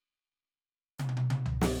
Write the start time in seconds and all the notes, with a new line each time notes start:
0.99 hi-hat pedal, high tom
1.09 high tom
1.17 high tom
1.30 high tom
1.46 floor tom
1.62 snare, crash